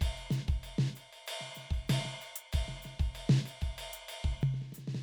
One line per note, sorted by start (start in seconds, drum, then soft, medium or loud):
0.01 kick medium
0.01 hi-hat pedal medium
0.01 ride medium
0.17 ride soft
0.31 snare medium
0.31 hi-hat pedal medium
0.48 kick medium
0.48 ride soft
0.63 hi-hat pedal medium
0.63 ride medium
0.78 snare loud
0.95 hi-hat pedal medium
0.95 ride soft
1.13 ride medium
1.26 hi-hat pedal medium
1.26 ride loud
1.41 snare soft
1.55 snare soft
1.55 hi-hat pedal medium
1.55 ride soft
1.71 kick soft
1.71 ride soft
1.88 snare medium
1.88 hi-hat pedal soft
1.88 ride loud
2.05 snare soft
2.21 hi-hat pedal medium
2.21 ride medium
2.36 open hi-hat loud
2.52 kick medium
2.52 hi-hat pedal medium
2.52 ride medium
2.68 snare soft
2.82 snare soft
2.82 hi-hat pedal medium
2.82 ride soft
3.00 kick medium
3.00 ride soft
3.14 hi-hat pedal soft
3.14 ride medium
3.29 snare loud
3.46 hi-hat pedal medium
3.46 ride medium
3.61 kick soft
3.61 ride medium
3.78 hi-hat pedal medium
3.78 ride medium
3.93 open hi-hat medium
4.08 hi-hat pedal medium
4.08 ride medium
4.24 kick medium
4.24 snare soft
4.41 floor tom loud
4.41 hi-hat pedal soft
4.54 snare soft
4.62 snare soft
4.66 snare soft
4.72 kick soft
4.72 snare soft
4.72 hi-hat pedal loud
4.78 snare soft
4.88 snare medium
4.95 snare medium